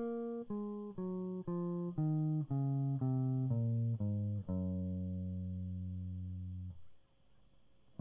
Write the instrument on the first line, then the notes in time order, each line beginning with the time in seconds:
electric guitar
0.00 A#3
0.51 G#3
0.99 F#3
1.49 F3
1.99 D#3
2.52 C#3
3.03 C3
3.52 A#2
4.03 G#2
4.51 F#2